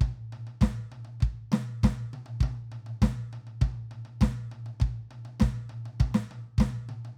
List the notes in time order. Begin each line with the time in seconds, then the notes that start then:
0.01 kick, mid tom
0.33 mid tom
0.47 mid tom
0.61 kick, snare, mid tom
0.92 mid tom
1.05 mid tom
1.21 kick, mid tom
1.52 snare, mid tom
1.83 kick, snare, mid tom
2.13 mid tom
2.26 mid tom
2.41 kick, mid tom
2.72 mid tom
2.86 mid tom
3.02 kick, snare, mid tom
3.33 mid tom
3.47 mid tom
3.62 kick, mid tom
3.91 mid tom
4.05 mid tom
4.21 kick, snare, mid tom
4.52 mid tom
4.66 mid tom
4.80 kick, mid tom
5.11 mid tom
5.25 mid tom
5.40 kick, snare, mid tom
5.70 mid tom
5.86 mid tom
6.00 kick, mid tom
6.15 snare
6.31 mid tom
6.58 kick, snare, mid tom
6.89 mid tom
7.05 mid tom